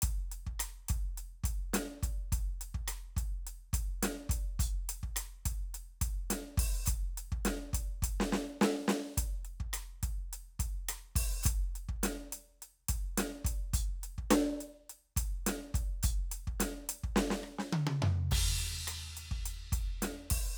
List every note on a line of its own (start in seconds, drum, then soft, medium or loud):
0.03 kick medium
0.03 closed hi-hat loud
0.32 closed hi-hat medium
0.46 kick soft
0.59 cross-stick medium
0.59 closed hi-hat loud
0.88 kick medium
0.88 closed hi-hat loud
1.18 closed hi-hat medium
1.44 kick medium
1.44 closed hi-hat medium
1.73 snare medium
1.73 closed hi-hat loud
2.03 kick medium
2.03 closed hi-hat medium
2.32 kick medium
2.32 closed hi-hat loud
2.61 closed hi-hat medium
2.74 kick soft
2.88 cross-stick medium
2.88 closed hi-hat loud
3.16 kick medium
3.16 closed hi-hat medium
3.47 closed hi-hat medium
3.73 kick medium
3.73 closed hi-hat loud
4.03 snare medium
4.03 closed hi-hat loud
4.29 kick medium
4.29 closed hi-hat loud
4.59 closed hi-hat loud
4.59 kick medium
4.89 closed hi-hat loud
5.03 kick soft
5.16 cross-stick medium
5.16 closed hi-hat loud
5.45 kick medium
5.45 closed hi-hat loud
5.52 kick soft
5.74 closed hi-hat medium
6.01 kick medium
6.01 closed hi-hat loud
6.30 snare medium
6.30 closed hi-hat loud
6.57 kick medium
6.57 open hi-hat loud
6.86 kick medium
6.86 closed hi-hat loud
6.86 hi-hat pedal loud
7.17 closed hi-hat medium
7.32 kick medium
7.45 snare medium
7.45 closed hi-hat loud
7.73 kick medium
7.73 closed hi-hat loud
8.02 kick medium
8.02 closed hi-hat loud
8.20 snare loud
8.32 snare loud
8.61 snare loud
8.88 snare loud
9.17 kick medium
9.17 closed hi-hat loud
9.45 closed hi-hat soft
9.60 kick soft
9.73 cross-stick medium
9.73 closed hi-hat loud
10.03 kick medium
10.03 closed hi-hat medium
10.33 closed hi-hat medium
10.59 kick medium
10.59 closed hi-hat loud
10.89 cross-stick medium
10.89 closed hi-hat loud
11.15 kick medium
11.15 open hi-hat loud
11.43 kick medium
11.43 closed hi-hat loud
11.43 hi-hat pedal loud
11.75 closed hi-hat medium
11.89 kick soft
11.96 kick soft
12.03 snare medium
12.03 closed hi-hat loud
12.32 closed hi-hat loud
12.62 closed hi-hat medium
12.88 kick medium
12.88 closed hi-hat loud
13.18 snare medium
13.18 closed hi-hat loud
13.44 kick medium
13.44 closed hi-hat loud
13.73 closed hi-hat loud
13.73 kick medium
14.03 closed hi-hat medium
14.18 kick soft
14.31 snare loud
14.31 closed hi-hat loud
14.60 closed hi-hat medium
14.89 closed hi-hat medium
15.16 kick medium
15.16 closed hi-hat loud
15.46 snare medium
15.46 closed hi-hat loud
15.74 kick medium
15.74 closed hi-hat medium
16.03 closed hi-hat loud
16.03 kick medium
16.31 closed hi-hat medium
16.47 kick soft
16.60 snare medium
16.60 closed hi-hat loud
16.89 closed hi-hat loud
17.03 kick medium
17.16 snare loud
17.30 snare medium
17.43 cross-stick medium
17.59 snare medium
17.73 high tom loud
17.87 high tom loud
18.02 mid tom loud
18.31 kick medium
18.31 crash loud
18.59 closed hi-hat medium
18.87 cross-stick medium
18.87 closed hi-hat loud
19.17 closed hi-hat medium
19.31 kick medium
19.46 closed hi-hat medium
19.72 kick medium
19.72 closed hi-hat medium
20.02 snare medium
20.02 closed hi-hat loud
20.30 kick medium
20.30 open hi-hat loud